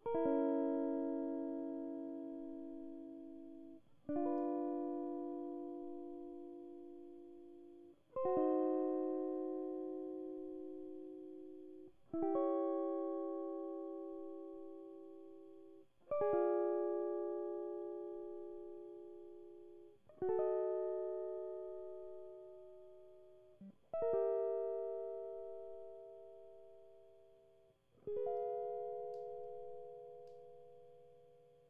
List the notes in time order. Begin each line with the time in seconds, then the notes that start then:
0.06 A#4
0.16 E4
0.25 C#4
4.09 D4
4.17 F4
4.27 B4
8.17 C5
8.26 F#4
8.38 D#4
12.14 E4
12.24 G4
12.36 C#5
16.12 D5
16.24 G#4
16.35 F4
20.26 F#4 A4
20.39 D#5
23.94 E5
24.02 A#4
24.14 G4
28.08 G#4
28.17 B4
28.29 F5